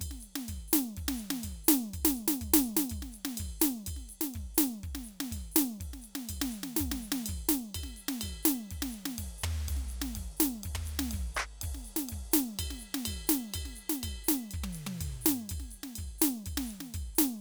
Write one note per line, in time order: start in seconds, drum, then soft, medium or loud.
0.01 kick soft
0.01 ride bell medium
0.11 snare soft
0.20 hi-hat pedal medium
0.20 ride soft
0.36 snare medium
0.48 kick soft
0.48 ride bell medium
0.54 kick soft
0.68 hi-hat pedal medium
0.73 snare loud
0.97 kick soft
0.97 ride medium
1.03 kick soft
1.08 snare medium
1.16 hi-hat pedal medium
1.16 ride soft
1.31 snare medium
1.44 kick soft
1.44 ride bell medium
1.49 kick soft
1.64 hi-hat pedal medium
1.68 snare loud
1.94 kick soft
1.94 ride bell medium
1.99 kick soft
2.05 snare loud
2.15 hi-hat pedal medium
2.15 ride soft
2.28 snare medium
2.41 kick soft
2.41 ride bell medium
2.47 kick soft
2.54 snare loud
2.63 hi-hat pedal medium
2.63 ride soft
2.77 snare medium
2.90 kick soft
2.90 ride bell medium
3.02 snare soft
3.12 hi-hat pedal medium
3.12 ride soft
3.25 snare medium
3.37 kick soft
3.37 ride bell medium
3.46 kick soft
3.60 snare loud
3.60 hi-hat pedal medium
3.87 kick soft
3.87 ride bell medium
3.97 snare soft
4.09 hi-hat pedal medium
4.09 ride soft
4.21 snare medium
4.34 kick soft
4.34 ride medium
4.41 kick soft
4.55 snare loud
4.55 hi-hat pedal medium
4.84 kick soft
4.84 ride soft
4.95 snare medium
5.04 hi-hat pedal medium
5.09 ride soft
5.20 snare medium
5.32 kick soft
5.32 ride bell medium
5.52 hi-hat pedal medium
5.56 snare loud
5.80 kick soft
5.80 ride medium
5.94 snare soft
6.02 hi-hat pedal medium
6.02 ride soft
6.15 snare medium
6.29 kick soft
6.29 ride bell medium
6.35 kick soft
6.42 snare medium
6.51 hi-hat pedal medium
6.51 ride soft
6.63 snare medium
6.77 kick soft
6.77 snare medium
6.77 ride medium
6.87 kick soft
6.92 snare medium
7.02 hi-hat pedal medium
7.12 snare medium
7.26 kick soft
7.26 ride bell medium
7.35 kick soft
7.49 snare loud
7.49 hi-hat pedal medium
7.75 kick soft
7.75 ride bell loud
7.81 kick soft
7.81 snare soft
7.96 hi-hat pedal medium
7.96 ride soft
8.08 snare medium
8.21 kick soft
8.21 ride bell loud
8.29 kick soft
8.43 snare loud
8.43 hi-hat pedal medium
8.71 kick soft
8.71 ride medium
8.77 kick soft
8.82 snare medium
8.90 hi-hat pedal medium
8.94 ride soft
9.06 snare medium
9.18 kick soft
9.18 ride loud
9.24 kick soft
9.38 hi-hat pedal medium
9.44 floor tom loud
9.68 kick soft
9.68 ride loud
9.77 snare soft
9.88 hi-hat pedal medium
9.88 ride soft
10.02 snare medium
10.15 kick soft
10.15 ride loud
10.37 snare loud
10.37 hi-hat pedal medium
10.64 kick soft
10.64 ride medium
10.71 kick soft
10.75 floor tom loud
10.85 hi-hat pedal medium
10.85 ride medium
10.99 snare medium
11.11 kick soft
11.11 ride loud
11.20 kick soft
11.35 percussion loud
11.35 hi-hat pedal medium
11.62 kick soft
11.62 ride loud
11.70 kick soft
11.75 snare soft
11.85 hi-hat pedal medium
11.85 ride soft
11.96 snare medium
12.09 kick soft
12.09 ride loud
12.32 snare loud
12.32 hi-hat pedal medium
12.59 kick soft
12.59 ride bell loud
12.66 kick soft
12.71 snare soft
12.79 hi-hat pedal medium
12.79 ride soft
12.94 snare medium
13.01 hi-hat pedal soft
13.06 kick soft
13.06 ride bell loud
13.27 snare loud
13.27 hi-hat pedal medium
13.49 hi-hat pedal soft
13.54 kick soft
13.54 ride bell loud
13.61 kick soft
13.66 snare soft
13.76 hi-hat pedal medium
13.76 ride soft
13.90 snare medium
14.03 kick soft
14.03 ride bell loud
14.24 hi-hat pedal medium
14.29 snare loud
14.51 kick soft
14.51 ride bell medium
14.60 kick soft
14.60 high tom medium
14.73 hi-hat pedal medium
14.73 ride medium
14.87 closed hi-hat soft
14.87 high tom medium
15.01 kick soft
15.01 ride bell medium
15.07 kick soft
15.21 hi-hat pedal medium
15.26 snare loud
15.49 kick soft
15.49 ride bell medium
15.57 kick soft
15.57 snare soft
15.71 hi-hat pedal medium
15.71 ride soft
15.83 snare medium
15.96 kick soft
15.96 ride bell medium
16.04 kick soft
16.19 snare loud
16.19 hi-hat pedal medium
16.46 kick soft
16.46 ride bell medium
16.53 kick soft
16.58 snare medium
16.66 hi-hat pedal medium
16.71 ride soft
16.81 snare medium
16.94 kick soft
16.94 ride bell medium
17.01 kick soft
17.15 snare loud
17.15 hi-hat pedal medium
17.36 hi-hat pedal soft